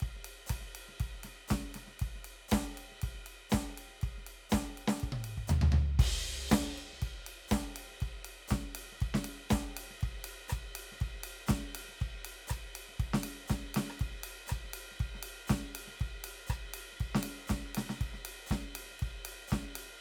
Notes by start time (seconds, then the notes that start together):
0.01 kick, ride
0.16 snare
0.25 ride
0.47 kick, cross-stick, hi-hat pedal, ride
0.61 snare
0.76 ride
0.89 snare
1.01 kick, ride
1.14 snare
1.24 snare, ride
1.49 kick, snare, hi-hat pedal, ride
1.75 snare, ride
1.88 snare
2.00 kick, ride
2.16 snare
2.25 ride
2.49 kick, snare, hi-hat pedal, ride
2.78 ride
2.92 snare
3.02 kick, ride
3.15 snare
3.27 ride
3.50 snare, hi-hat pedal, ride
3.54 kick
3.78 ride
4.02 kick, ride
4.18 snare
4.27 ride
4.50 kick, snare, hi-hat pedal, ride
4.78 ride
4.88 snare
5.01 kick, ride
5.13 high tom
5.25 ride
5.38 kick
5.48 floor tom, hi-hat pedal
5.62 floor tom
5.73 floor tom
6.00 kick, crash, ride
6.26 ride
6.50 kick, snare, hi-hat pedal, ride
6.78 ride
6.93 snare
7.03 kick, ride
7.27 ride
7.49 kick, snare, hi-hat pedal, ride
7.77 ride
7.92 snare
8.01 kick, ride
8.25 ride
8.49 kick, snare, hi-hat pedal, ride
8.76 ride
8.92 snare
9.01 kick, ride
9.15 snare
9.25 ride
9.50 kick, snare, hi-hat pedal, ride
9.78 ride
9.91 snare
10.02 kick, ride
10.13 snare
10.25 ride
10.49 kick, cross-stick, hi-hat pedal, ride
10.76 ride
10.92 snare
11.01 kick, ride
11.14 snare
11.24 ride
11.48 kick, snare, hi-hat pedal, ride
11.76 ride
11.89 snare
12.01 kick, ride
12.14 snare
12.26 ride
12.48 kick, cross-stick, hi-hat pedal, ride
12.76 ride
12.89 snare
13.00 kick, ride
13.14 snare
13.24 ride
13.48 kick, snare, hi-hat pedal, ride
13.75 snare, ride
13.91 cross-stick
14.00 kick, ride
14.12 snare
14.15 snare
14.24 ride
14.48 cross-stick, hi-hat pedal, ride
14.53 kick
14.65 snare
14.74 ride
14.92 snare
15.00 kick, ride
15.15 snare
15.24 ride
15.48 kick, snare, hi-hat pedal, ride
15.76 ride
15.88 snare
16.01 kick, ride
16.16 snare
16.25 ride
16.48 kick, cross-stick, hi-hat pedal, ride
16.69 snare
16.74 ride
16.93 snare
17.01 kick, ride
17.15 snare
17.24 ride
17.48 kick, snare, hi-hat pedal, ride
17.76 snare, ride
17.90 snare
17.96 hi-hat pedal
18.02 kick, ride
18.14 snare
18.26 ride
18.47 hi-hat pedal, ride
18.52 kick, snare
18.69 snare
18.76 ride
18.91 snare
19.00 kick, ride
19.26 ride
19.48 hi-hat pedal, ride
19.53 kick, snare
19.76 ride